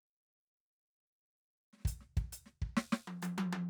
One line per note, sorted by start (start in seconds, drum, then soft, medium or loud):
1.73 snare soft
1.77 snare soft
1.80 snare soft
1.85 closed hi-hat medium
1.85 kick medium
2.01 snare soft
2.17 kick medium
2.17 closed hi-hat soft
2.32 closed hi-hat medium
2.46 snare soft
2.62 kick soft
2.77 snare medium
2.92 snare medium
3.07 high tom medium
3.22 hi-hat pedal medium
3.22 high tom medium
3.38 high tom loud
3.53 high tom loud